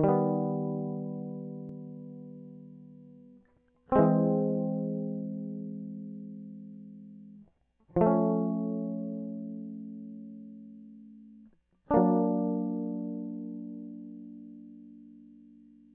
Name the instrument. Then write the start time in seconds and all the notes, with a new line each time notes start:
electric guitar
0.00 D#3
0.05 G3
0.09 B3
3.93 G#3 C4
4.00 E3
7.98 F3 A3
8.07 C#4
11.91 A#3 D4
11.97 F#3